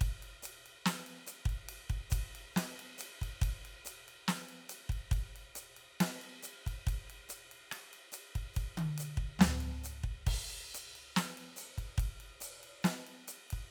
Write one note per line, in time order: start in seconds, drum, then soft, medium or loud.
0.01 kick medium
0.01 hi-hat pedal soft
0.01 ride medium
0.23 ride medium
0.43 hi-hat pedal loud
0.43 ride medium
0.66 ride medium
0.86 snare loud
0.86 ride loud
1.07 ride medium
1.27 hi-hat pedal loud
1.27 ride medium
1.46 kick medium
1.46 ride medium
1.69 ride loud
1.90 kick soft
1.90 ride medium
2.10 kick medium
2.10 hi-hat pedal loud
2.10 ride loud
2.35 ride medium
2.53 snare medium
2.53 hi-hat pedal soft
2.58 ride loud
2.80 ride medium
2.98 hi-hat pedal loud
2.98 ride loud
3.22 kick soft
3.22 ride medium
3.42 kick medium
3.42 ride loud
3.65 ride medium
3.85 hi-hat pedal loud
3.85 ride medium
4.08 ride medium
4.28 snare medium
4.28 ride medium
4.49 ride medium
4.69 hi-hat pedal loud
4.69 ride medium
4.89 kick soft
4.89 ride medium
5.11 kick medium
5.11 ride medium
5.36 ride medium
5.55 hi-hat pedal loud
5.55 ride medium
5.77 ride medium
6.01 snare loud
6.01 ride loud
6.22 ride medium
6.43 hi-hat pedal loud
6.43 ride medium
6.67 kick soft
6.67 ride medium
6.87 kick medium
6.87 hi-hat pedal soft
6.87 ride soft
6.87 ride medium
7.10 ride medium
7.29 hi-hat pedal loud
7.29 ride medium
7.52 ride medium
7.69 cross-stick medium
7.69 hi-hat pedal soft
7.69 ride loud
7.93 ride medium
8.12 hi-hat pedal loud
8.12 ride medium
8.35 kick soft
8.35 ride medium
8.54 kick medium
8.54 hi-hat pedal soft
8.54 ride medium
8.77 high tom loud
8.77 ride medium
8.98 hi-hat pedal loud
8.98 ride medium
9.17 kick soft
9.39 snare loud
9.39 floor tom loud
9.61 ride medium
9.84 hi-hat pedal loud
9.84 ride medium
10.04 kick soft
10.27 kick medium
10.27 hi-hat pedal soft
10.27 crash loud
10.27 ride medium
10.50 ride medium
10.74 hi-hat pedal loud
10.74 ride medium
10.96 ride medium
11.16 snare loud
11.16 hi-hat pedal soft
11.16 ride medium
11.37 ride medium
11.56 hi-hat pedal medium
11.56 ride medium
11.78 kick soft
11.78 ride medium
11.97 kick medium
11.97 hi-hat pedal soft
11.97 ride medium
12.20 ride medium
12.41 hi-hat pedal loud
12.41 ride medium
12.63 ride medium
12.83 snare loud
12.83 hi-hat pedal soft
12.83 ride medium
13.07 ride medium
13.28 hi-hat pedal loud
13.28 ride medium
13.48 hi-hat pedal soft
13.48 ride medium
13.53 kick soft